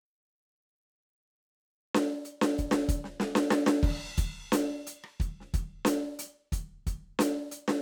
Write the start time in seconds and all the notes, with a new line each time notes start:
1.94 snare
2.25 closed hi-hat
2.41 snare
2.58 closed hi-hat, kick
2.71 snare
2.88 closed hi-hat, kick
3.04 snare
3.20 snare
3.35 snare
3.50 snare
3.66 snare
3.83 kick, crash
4.07 snare
4.17 closed hi-hat, kick
4.52 closed hi-hat, snare
4.87 closed hi-hat
5.04 cross-stick
5.20 closed hi-hat, kick
5.40 snare
5.54 closed hi-hat, kick
5.85 closed hi-hat, snare
6.19 closed hi-hat
6.52 closed hi-hat, kick
6.86 closed hi-hat, kick
7.19 closed hi-hat, snare
7.51 closed hi-hat
7.68 snare